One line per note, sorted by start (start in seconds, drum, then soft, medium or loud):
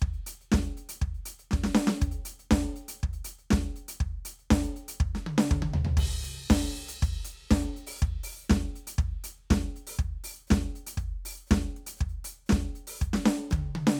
0.01 kick loud
0.01 closed hi-hat soft
0.13 closed hi-hat soft
0.27 closed hi-hat loud
0.41 closed hi-hat soft
0.52 kick loud
0.52 snare loud
0.65 closed hi-hat soft
0.77 closed hi-hat medium
0.89 closed hi-hat loud
1.02 kick loud
1.02 closed hi-hat soft
1.14 closed hi-hat soft
1.23 closed hi-hat loud
1.23 kick soft
1.39 closed hi-hat medium
1.51 kick loud
1.51 snare medium
1.64 snare loud
1.75 snare loud
1.87 snare loud
2.01 closed hi-hat medium
2.01 kick loud
2.11 closed hi-hat medium
2.25 closed hi-hat loud
2.39 closed hi-hat soft
2.51 kick loud
2.51 snare loud
2.73 closed hi-hat medium
2.73 kick soft
2.88 closed hi-hat loud
3.00 kick loud
3.00 closed hi-hat soft
3.13 closed hi-hat soft
3.25 closed hi-hat loud
3.39 closed hi-hat soft
3.51 kick loud
3.51 snare loud
3.63 closed hi-hat soft
3.73 closed hi-hat soft
3.73 kick soft
3.88 closed hi-hat loud
4.00 kick loud
4.00 closed hi-hat soft
4.12 closed hi-hat soft
4.25 closed hi-hat loud
4.39 closed hi-hat soft
4.51 kick loud
4.51 snare loud
4.64 closed hi-hat soft
4.76 closed hi-hat soft
4.88 closed hi-hat loud
5.00 kick loud
5.00 closed hi-hat soft
5.15 snare medium
5.27 high tom loud
5.38 snare loud
5.51 kick loud
5.51 high tom loud
5.62 high tom loud
5.74 floor tom loud
5.85 floor tom loud
5.97 kick loud
5.97 crash loud
6.11 closed hi-hat soft
6.24 closed hi-hat medium
6.50 kick loud
6.50 snare loud
6.50 crash loud
6.75 closed hi-hat soft
6.89 closed hi-hat loud
7.02 closed hi-hat medium
7.02 kick loud
7.13 closed hi-hat soft
7.25 closed hi-hat loud
7.50 kick loud
7.50 snare loud
7.50 hi-hat pedal soft
7.62 closed hi-hat soft
7.76 closed hi-hat soft
7.87 open hi-hat loud
7.98 kick loud
7.98 closed hi-hat soft
7.98 hi-hat pedal soft
8.09 closed hi-hat soft
8.24 open hi-hat loud
8.39 open hi-hat soft
8.44 hi-hat pedal soft
8.50 kick loud
8.50 snare loud
8.76 closed hi-hat medium
8.87 closed hi-hat loud
8.98 kick loud
8.98 closed hi-hat soft
9.11 closed hi-hat soft
9.24 closed hi-hat loud
9.38 closed hi-hat soft
9.50 kick loud
9.50 snare loud
9.63 closed hi-hat soft
9.76 closed hi-hat medium
9.87 open hi-hat loud
9.94 hi-hat pedal soft
9.99 kick loud
9.99 closed hi-hat soft
10.10 closed hi-hat soft
10.24 open hi-hat loud
10.47 snare loud
10.47 hi-hat pedal soft
10.52 kick loud
10.75 closed hi-hat soft
10.87 closed hi-hat loud
10.93 hi-hat pedal soft
10.97 closed hi-hat soft
10.97 kick loud
11.09 closed hi-hat soft
11.25 open hi-hat loud
11.47 hi-hat pedal soft
11.51 kick loud
11.51 snare loud
11.64 closed hi-hat soft
11.77 closed hi-hat soft
11.87 closed hi-hat loud
11.96 closed hi-hat soft
11.96 hi-hat pedal soft
12.01 kick loud
12.09 closed hi-hat soft
12.24 open hi-hat loud
12.39 open hi-hat soft
12.46 snare loud
12.46 hi-hat pedal soft
12.52 kick loud
12.63 closed hi-hat soft
12.75 closed hi-hat soft
12.87 open hi-hat loud
12.99 closed hi-hat medium
12.99 kick loud
12.99 hi-hat pedal soft
13.13 snare loud
13.26 snare loud
13.51 kick loud
13.51 hi-hat pedal medium
13.51 high tom loud
13.75 high tom loud
13.87 snare loud